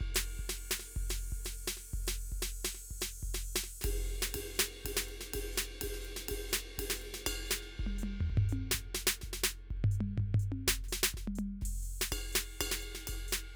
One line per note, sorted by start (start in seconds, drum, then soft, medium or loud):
0.01 kick soft
0.09 kick soft
0.11 kick soft
0.15 snare loud
0.15 hi-hat pedal medium
0.15 crash loud
0.39 kick soft
0.49 snare medium
0.49 crash loud
0.71 snare medium
0.71 crash loud
0.80 snare soft
0.96 kick soft
1.04 kick soft
1.10 snare medium
1.10 crash loud
1.32 kick soft
1.45 snare medium
1.45 crash loud
1.68 snare loud
1.68 crash medium
1.77 snare soft
1.94 kick soft
2.01 kick soft
2.07 snare loud
2.07 crash loud
2.32 kick soft
2.42 snare medium
2.42 crash loud
2.65 snare loud
2.65 crash loud
2.75 snare soft
2.91 kick soft
2.97 kick soft
3.01 snare loud
3.01 crash loud
3.23 kick soft
3.29 kick soft
3.34 snare medium
3.34 crash loud
3.56 snare loud
3.56 crash loud
3.64 snare soft
3.81 kick medium
3.81 snare soft
3.81 ride loud
3.93 kick soft
4.06 hi-hat pedal soft
4.06 ride soft
4.22 snare medium
4.34 kick soft
4.34 ride loud
4.42 kick soft
4.55 hi-hat pedal medium
4.59 snare loud
4.85 kick soft
4.85 ride loud
4.97 snare loud
5.04 hi-hat pedal medium
5.09 ride soft
5.21 snare medium
5.34 kick soft
5.34 ride loud
5.53 hi-hat pedal medium
5.58 snare loud
5.81 kick soft
5.81 ride loud
5.90 kick soft
5.94 snare soft
6.02 hi-hat pedal medium
6.02 ride soft
6.17 snare medium
6.29 kick soft
6.29 ride loud
6.37 kick soft
6.50 snare loud
6.50 hi-hat pedal medium
6.79 kick soft
6.79 ride loud
6.84 kick soft
6.90 snare medium
6.97 hi-hat pedal medium
7.02 ride soft
7.14 snare medium
7.27 kick soft
7.27 ride bell loud
7.46 hi-hat pedal medium
7.51 snare loud
7.62 snare soft
7.80 kick soft
7.86 kick soft
7.86 mid tom medium
7.99 hi-hat pedal medium
8.04 mid tom loud
8.21 floor tom loud
8.30 kick soft
8.36 kick soft
8.36 floor tom loud
8.49 hi-hat pedal medium
8.49 high tom loud
8.71 kick soft
8.71 snare loud
8.81 kick soft
8.95 snare loud
8.95 hi-hat pedal medium
9.07 snare loud
9.21 kick soft
9.21 snare soft
9.33 snare medium
9.44 snare loud
9.44 hi-hat pedal medium
9.71 kick soft
9.77 kick soft
9.84 floor tom loud
9.92 hi-hat pedal medium
10.01 mid tom loud
10.18 kick soft
10.18 floor tom loud
10.26 kick soft
10.35 floor tom loud
10.40 hi-hat pedal medium
10.52 high tom medium
10.68 kick soft
10.68 snare loud
10.84 snare soft
10.89 snare loud
10.89 hi-hat pedal medium
11.03 snare loud
11.14 kick soft
11.14 snare soft
11.21 kick soft
11.28 mid tom loud
11.36 hi-hat pedal medium
11.36 mid tom loud
11.61 kick soft
11.61 snare soft
11.65 kick soft
11.65 crash loud
11.74 kick soft
11.83 hi-hat pedal medium
12.01 snare loud
12.12 kick soft
12.12 ride bell loud
12.33 snare loud
12.33 hi-hat pedal medium
12.53 hi-hat pedal soft
12.61 kick soft
12.61 ride bell loud
12.72 snare medium
12.80 hi-hat pedal medium
12.80 ride soft
12.95 snare medium
13.01 hi-hat pedal soft
13.07 kick soft
13.07 ride bell medium
13.28 hi-hat pedal medium
13.33 snare loud